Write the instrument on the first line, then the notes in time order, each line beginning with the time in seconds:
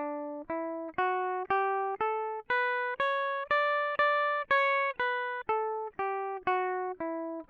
electric guitar
0.00 D4
0.50 E4
0.99 F#4
1.51 G4
2.01 A4
2.50 B4
3.00 C#5
3.51 D5
3.99 D5
4.51 C#5
5.00 B4
5.50 A4
6.00 G4
6.47 F#4
7.01 E4